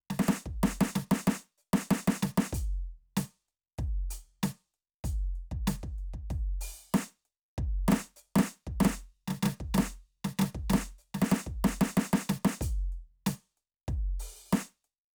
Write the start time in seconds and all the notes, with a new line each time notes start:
0.11 snare
0.20 snare
0.29 snare
0.47 kick
0.64 snare
0.82 snare
0.92 hi-hat pedal
0.97 snare
1.12 snare
1.27 snare, hi-hat pedal
1.59 hi-hat pedal
1.74 snare
1.92 snare
2.09 snare
2.24 snare
2.39 snare
2.54 closed hi-hat, kick
3.18 closed hi-hat, snare
3.50 closed hi-hat
3.79 kick, closed hi-hat
4.12 open hi-hat
4.44 closed hi-hat, snare, hi-hat pedal
4.75 closed hi-hat
5.05 closed hi-hat, kick
5.37 closed hi-hat
5.53 kick
5.68 closed hi-hat, snare
5.84 kick
5.99 closed hi-hat
6.15 kick
6.31 kick, closed hi-hat
6.62 open hi-hat
6.95 closed hi-hat, snare, hi-hat pedal
7.26 closed hi-hat
7.59 kick
7.89 snare
7.93 snare
8.17 hi-hat pedal
8.37 snare
8.40 snare
8.68 kick
8.82 snare
8.86 snare
9.29 snare
9.32 snare
9.44 snare
9.47 snare
9.61 kick
9.75 snare
9.79 snare
10.26 snare
10.38 snare, hi-hat pedal
10.43 snare
10.56 kick
10.71 snare
10.75 snare
10.99 hi-hat pedal
11.16 snare
11.23 snare
11.31 snare, hi-hat pedal
11.48 kick
11.65 snare
11.82 snare
11.98 snare
12.14 snare
12.30 snare
12.46 snare
12.62 closed hi-hat, kick
12.93 closed hi-hat
13.28 closed hi-hat, snare
13.58 closed hi-hat
13.89 kick, closed hi-hat
14.21 open hi-hat
14.53 snare, closed hi-hat, hi-hat pedal
14.86 closed hi-hat